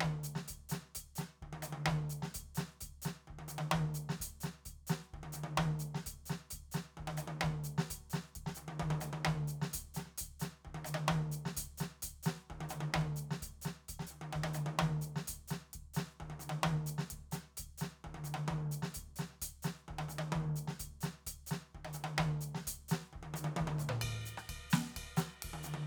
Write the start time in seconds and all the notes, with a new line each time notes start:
0.01 kick, high tom
0.24 hi-hat pedal
0.36 snare
0.48 closed hi-hat, kick
0.69 snare, hi-hat pedal
0.83 snare
0.95 closed hi-hat, kick
1.16 snare, hi-hat pedal
1.42 kick, high tom
1.53 high tom
1.63 hi-hat pedal, high tom
1.73 high tom
1.86 kick, high tom
2.10 hi-hat pedal
2.23 snare
2.35 closed hi-hat, kick
2.55 snare, hi-hat pedal
2.81 closed hi-hat, kick
3.02 snare, hi-hat pedal
3.28 kick, high tom
3.39 high tom
3.48 hi-hat pedal, high tom
3.59 high tom
3.72 kick, high tom
3.95 hi-hat pedal
4.10 snare
4.21 closed hi-hat, kick
4.41 snare, hi-hat pedal
4.66 closed hi-hat, kick
4.87 snare, hi-hat pedal
5.14 kick, high tom
5.23 high tom
5.33 hi-hat pedal, high tom
5.44 high tom
5.58 kick, high tom
5.80 hi-hat pedal
5.95 snare
6.06 closed hi-hat, kick
6.26 hi-hat pedal
6.30 snare
6.51 closed hi-hat, kick
6.72 snare, hi-hat pedal
6.97 kick, high tom
7.08 high tom
7.17 hi-hat pedal
7.28 high tom
7.41 kick, high tom
7.64 hi-hat pedal
7.78 snare
7.91 closed hi-hat, kick
8.10 snare, hi-hat pedal
8.36 kick, closed hi-hat
8.47 snare
8.55 hi-hat pedal, high tom
8.68 high tom
8.80 kick, high tom
8.91 high tom
9.01 hi-hat pedal, high tom
9.13 high tom
9.25 kick, high tom
9.48 hi-hat pedal
9.62 snare
9.74 closed hi-hat, kick
9.95 snare, hi-hat pedal
10.06 snare
10.18 closed hi-hat, kick
10.40 snare, hi-hat pedal
10.65 kick, high tom
10.75 high tom
10.85 hi-hat pedal, high tom
10.95 high tom
11.08 kick, high tom
11.32 hi-hat pedal
11.46 snare
11.57 closed hi-hat, kick
11.78 snare, hi-hat pedal
12.03 closed hi-hat, kick
12.23 snare, hi-hat pedal
12.50 kick, high tom
12.61 high tom
12.69 hi-hat pedal, high tom
12.81 high tom
12.94 kick, high tom
13.02 high tom
13.16 hi-hat pedal
13.31 snare
13.43 closed hi-hat, kick
13.62 snare, hi-hat pedal
13.89 closed hi-hat, kick
14.00 snare
14.07 hi-hat pedal
14.11 high tom
14.22 high tom
14.33 kick, high tom
14.44 high tom
14.54 hi-hat pedal, high tom
14.66 high tom
14.79 kick, high tom
15.02 hi-hat pedal
15.16 snare
15.28 closed hi-hat, kick
15.48 snare, hi-hat pedal
15.73 kick, closed hi-hat
15.94 snare, hi-hat pedal
16.20 kick, high tom
16.30 high tom
16.40 hi-hat pedal, high tom
16.50 high tom
16.64 kick, high tom
16.87 hi-hat pedal
16.99 snare
17.10 kick, closed hi-hat
17.32 snare, hi-hat pedal
17.42 snare
17.57 closed hi-hat, kick
17.78 snare, hi-hat pedal
18.05 kick, high tom
18.15 high tom
18.24 hi-hat pedal, high tom
18.35 high tom
18.48 kick, high tom
18.56 kick
18.72 hi-hat pedal
18.83 snare
18.95 closed hi-hat, kick
19.16 snare, hi-hat pedal
19.31 snare
19.42 closed hi-hat, kick
19.63 snare, hi-hat pedal
19.88 kick, high tom
19.99 high tom
20.09 hi-hat pedal, high tom
20.19 high tom
20.32 kick, high tom
20.56 hi-hat pedal
20.68 snare
20.80 closed hi-hat, kick
21.01 snare, hi-hat pedal
21.27 closed hi-hat, kick
21.47 hi-hat pedal
21.51 snare
21.75 kick, high tom
21.85 high tom
21.93 hi-hat pedal, high tom
22.04 high tom
22.18 kick, high tom
22.41 hi-hat pedal
22.55 snare
22.65 closed hi-hat, kick, snare
22.89 snare, hi-hat pedal
23.13 kick, high tom
23.34 hi-hat pedal, high tom
23.45 high tom
23.57 high tom
23.61 kick
23.68 high tom
23.79 hi-hat pedal, mid tom
23.89 mid tom
24.02 kick, ride bell
24.22 hi-hat pedal, ride
24.38 cross-stick
24.50 kick, ride bell
24.71 snare, hi-hat pedal
24.97 kick, ride bell
25.17 snare, hi-hat pedal
25.43 kick, ride
25.54 high tom
25.64 hi-hat pedal, high tom
25.74 high tom